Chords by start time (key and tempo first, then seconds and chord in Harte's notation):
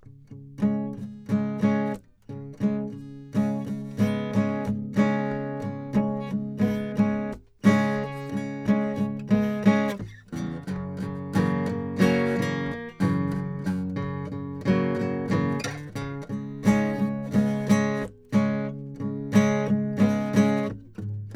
C# major, 90 BPM
0.00 C#:(1,5)
10.67 F#:7
16.00 C#:sus2/5